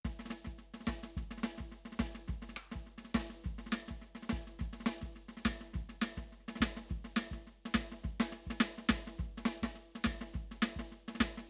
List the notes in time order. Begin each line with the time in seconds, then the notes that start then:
0.04 kick, snare
0.10 kick
0.19 snare
0.25 snare, hi-hat pedal
0.30 snare
0.45 kick, snare
0.58 snare
0.74 snare
0.81 snare
0.86 kick, snare, hi-hat pedal
1.03 snare
1.17 kick, snare
1.23 kick
1.31 snare
1.38 snare
1.43 snare, hi-hat pedal
1.58 kick, snare
1.72 snare
1.85 snare
1.92 snare
1.99 kick, snare, hi-hat pedal
2.15 snare
2.28 kick, snare
2.36 kick
2.42 snare
2.49 snare
2.56 cross-stick, hi-hat pedal
2.72 snare
2.76 kick
2.87 snare
2.98 snare
3.05 snare
3.10 snare
3.14 kick, hi-hat pedal
3.30 snare
3.44 kick, snare
3.52 kick
3.58 snare
3.66 snare
3.72 snare, hi-hat pedal
3.88 kick, snare
4.02 snare
4.15 snare
4.23 snare
4.29 kick, snare, hi-hat pedal
4.41 kick
4.47 snare
4.59 kick, snare
4.68 kick
4.73 snare
4.80 snare
4.86 snare, hi-hat pedal
5.01 kick, snare
5.16 snare
5.28 snare
5.37 snare
5.44 kick, snare, hi-hat pedal
5.61 snare
5.74 kick, snare
5.82 kick
5.89 snare
6.02 snare, hi-hat pedal
6.17 kick, snare
6.32 snare
6.40 snare
6.48 snare
6.56 snare
6.61 kick, snare, hi-hat pedal
6.77 snare
6.89 kick, snare
6.97 kick
7.04 snare
7.16 snare, hi-hat pedal
7.31 kick, snare
7.47 snare
7.65 snare
7.74 kick, snare, hi-hat pedal
7.92 snare
8.04 kick, snare
8.11 kick
8.13 kick
8.20 snare
8.31 snare, hi-hat pedal
8.47 kick, snare
8.60 snare
8.78 snare
8.89 kick, snare, hi-hat pedal
9.07 snare
9.19 kick, snare
9.26 kick
9.37 snare
9.45 snare, hi-hat pedal
9.63 kick, snare
9.75 snare
9.95 snare
10.04 kick, snare, hi-hat pedal
10.12 kick
10.21 snare
10.34 kick, snare
10.51 snare
10.62 snare, hi-hat pedal
10.76 kick, snare
10.92 snare
11.08 snare
11.15 snare
11.20 kick, snare, hi-hat pedal
11.26 kick
11.37 snare